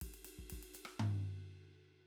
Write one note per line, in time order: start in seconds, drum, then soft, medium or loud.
0.01 kick soft
0.01 ride medium
0.14 ride soft
0.24 hi-hat pedal soft
0.24 ride medium
0.38 kick soft
0.50 kick soft
0.50 ride medium
0.63 ride soft
0.73 hi-hat pedal medium
0.73 ride medium
0.85 cross-stick medium
0.99 floor tom loud